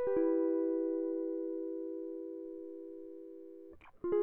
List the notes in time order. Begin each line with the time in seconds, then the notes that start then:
0.00 B4
0.08 G4
0.17 E4
4.05 F4
4.13 G#4